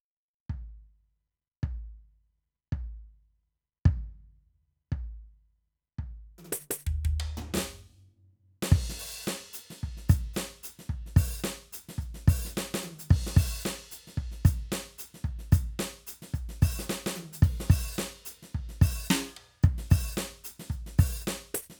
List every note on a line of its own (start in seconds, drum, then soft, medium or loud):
0.50 kick medium
1.63 kick medium
2.72 kick medium
3.86 kick loud
4.92 kick medium
5.99 kick medium
6.38 high tom medium
6.45 high tom medium
6.52 high tom loud
6.71 high tom loud
6.87 mid tom loud
7.05 mid tom loud
7.20 mid tom loud
7.37 floor tom loud
7.54 kick soft
7.54 snare loud
7.57 snare loud
8.63 snare loud
8.72 kick loud
8.72 crash loud
8.90 snare medium
8.99 open hi-hat loud
9.24 snare loud
9.24 hi-hat pedal medium
9.53 closed hi-hat loud
9.70 snare medium
9.83 kick medium
9.97 snare soft
10.09 closed hi-hat loud
10.09 kick loud
10.34 snare loud
10.34 hi-hat pedal medium
10.63 closed hi-hat loud
10.79 snare medium
10.89 kick medium
11.06 snare soft
11.16 open hi-hat loud
11.16 kick loud
11.39 hi-hat pedal medium
11.44 snare loud
11.72 closed hi-hat loud
11.89 snare medium
11.98 closed hi-hat soft
11.98 kick medium
12.14 snare medium
12.28 open hi-hat loud
12.28 kick loud
12.45 snare medium
12.50 hi-hat pedal medium
12.57 snare loud
12.74 snare loud
12.83 high tom loud
12.99 closed hi-hat loud
13.10 kick loud
13.10 crash loud
13.27 snare medium
13.37 open hi-hat loud
13.37 kick loud
13.62 snare loud
13.62 hi-hat pedal medium
13.91 closed hi-hat loud
14.07 snare soft
14.17 kick medium
14.17 closed hi-hat soft
14.32 snare soft
14.45 closed hi-hat loud
14.45 kick loud
14.72 snare loud
14.98 closed hi-hat loud
15.14 snare soft
15.24 kick medium
15.24 closed hi-hat soft
15.39 snare soft
15.52 closed hi-hat loud
15.52 kick loud
15.79 snare loud
16.07 closed hi-hat loud
16.22 snare medium
16.34 closed hi-hat medium
16.34 kick medium
16.49 snare medium
16.62 open hi-hat loud
16.62 kick loud
16.79 snare medium
16.79 hi-hat pedal medium
16.90 snare loud
17.06 snare loud
17.16 high tom loud
17.33 closed hi-hat loud
17.42 kick loud
17.42 crash loud
17.60 snare medium
17.70 open hi-hat loud
17.70 kick loud
17.95 snare loud
17.95 hi-hat pedal medium
18.25 closed hi-hat loud
18.43 snare soft
18.53 kick medium
18.53 closed hi-hat soft
18.69 snare soft
18.81 open hi-hat loud
18.81 kick loud
19.07 snare loud
19.07 hi-hat pedal medium
19.37 mid tom medium
19.63 kick loud
19.63 closed hi-hat medium
19.78 snare medium
19.90 open hi-hat loud
19.90 kick loud
20.13 hi-hat pedal medium
20.17 snare loud
20.44 closed hi-hat loud
20.60 snare medium
20.70 closed hi-hat soft
20.70 kick medium
20.86 snare medium
20.98 open hi-hat loud
20.98 kick loud
21.21 hi-hat pedal medium
21.27 snare loud
21.54 high tom loud
21.70 snare soft